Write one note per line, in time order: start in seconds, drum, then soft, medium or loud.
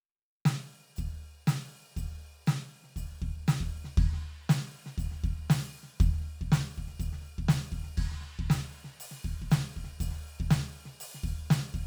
0.45 snare loud
0.45 percussion medium
0.70 percussion soft
0.96 kick medium
0.96 percussion medium
1.47 snare loud
1.47 percussion medium
1.71 percussion soft
1.97 kick medium
1.97 percussion medium
2.22 percussion soft
2.47 snare loud
2.47 percussion medium
2.70 percussion soft
2.84 snare soft
2.90 snare soft
2.96 kick medium
2.96 percussion medium
3.03 snare soft
3.08 snare soft
3.12 snare soft
3.16 snare soft
3.21 kick medium
3.21 percussion soft
3.48 snare loud
3.48 percussion medium
3.60 kick medium
3.71 percussion soft
3.84 snare soft
3.97 kick loud
3.97 crash medium
4.13 snare soft
4.21 snare soft
4.21 percussion soft
4.49 snare loud
4.49 percussion medium
4.75 percussion soft
4.86 snare soft
4.98 kick medium
4.98 percussion medium
5.11 snare soft
5.24 kick medium
5.24 percussion soft
5.50 snare loud
5.50 percussion medium
5.76 percussion soft
5.83 snare soft
6.00 kick loud
6.00 percussion medium
6.13 snare soft
6.21 snare soft
6.27 snare soft
6.41 kick medium
6.52 snare loud
6.52 percussion medium
6.75 kick medium
6.75 percussion soft
6.87 snare soft
6.92 snare soft
7.00 kick medium
7.00 percussion medium
7.12 snare soft
7.22 snare soft
7.22 percussion soft
7.38 kick medium
7.49 snare loud
7.49 percussion medium
7.72 kick medium
7.72 percussion soft
7.83 snare soft
7.91 snare soft
7.97 kick medium
7.97 crash medium
8.12 snare soft
8.21 snare soft
8.21 percussion soft
8.39 kick medium
8.50 snare loud
8.50 percussion medium
8.74 percussion soft
8.84 snare soft
9.00 percussion loud
9.11 snare soft
9.24 kick medium
9.24 percussion soft
9.42 kick medium
9.51 snare loud
9.51 percussion medium
9.74 kick soft
9.74 percussion soft
9.84 snare soft
10.00 kick medium
10.00 percussion medium
10.11 snare soft
10.25 snare soft
10.25 percussion soft
10.40 kick medium
10.51 snare loud
10.51 percussion medium
10.75 percussion soft
10.85 snare soft
11.00 percussion loud
11.14 snare soft
11.24 kick medium
11.24 percussion soft
11.50 snare loud
11.50 percussion medium
11.74 kick medium
11.74 percussion soft